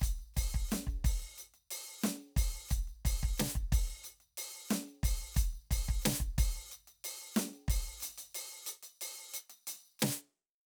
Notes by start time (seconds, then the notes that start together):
0.01 closed hi-hat, kick, hi-hat pedal
0.19 closed hi-hat
0.34 kick, hi-hat pedal, percussion
0.55 kick
0.69 closed hi-hat, snare, hi-hat pedal
0.87 kick, closed hi-hat
1.05 kick, percussion
1.38 hi-hat pedal, percussion
1.54 closed hi-hat
1.71 percussion
2.02 closed hi-hat, snare, hi-hat pedal
2.21 closed hi-hat
2.37 kick, percussion
2.69 closed hi-hat, kick, hi-hat pedal
2.88 closed hi-hat
3.05 kick, percussion
3.23 kick
3.38 closed hi-hat, snare, hi-hat pedal
3.56 kick, closed hi-hat
3.73 kick, percussion
4.04 hi-hat pedal, percussion
4.21 closed hi-hat
4.38 percussion
4.69 closed hi-hat, snare, hi-hat pedal
4.88 closed hi-hat
5.04 kick, percussion
5.35 closed hi-hat, kick, hi-hat pedal
5.53 closed hi-hat
5.71 kick, percussion
5.89 kick
6.03 closed hi-hat, snare, hi-hat pedal
6.20 kick, closed hi-hat
6.38 kick, percussion
6.72 hi-hat pedal, percussion
6.88 closed hi-hat
7.05 percussion
7.35 closed hi-hat, snare, hi-hat pedal
7.54 closed hi-hat
7.68 kick, percussion
8.01 closed hi-hat, hi-hat pedal
8.18 closed hi-hat
8.35 percussion
8.66 hi-hat pedal, percussion
8.83 closed hi-hat
9.02 percussion
9.34 hi-hat pedal, percussion
9.50 closed hi-hat
9.68 percussion
10.00 snare, hi-hat pedal